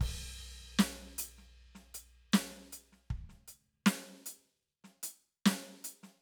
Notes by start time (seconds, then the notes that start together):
0.01 kick, crash
0.23 snare
0.40 open hi-hat
0.79 snare
1.00 snare
1.18 closed hi-hat
1.38 snare
1.75 snare
1.94 closed hi-hat
2.33 snare, hi-hat pedal
2.51 snare
2.73 closed hi-hat
2.92 snare
3.08 kick, closed hi-hat
3.29 snare
3.48 closed hi-hat
3.86 snare
4.26 closed hi-hat
4.63 closed hi-hat
4.84 snare
5.03 closed hi-hat
5.46 snare
5.51 snare
5.84 closed hi-hat
6.03 snare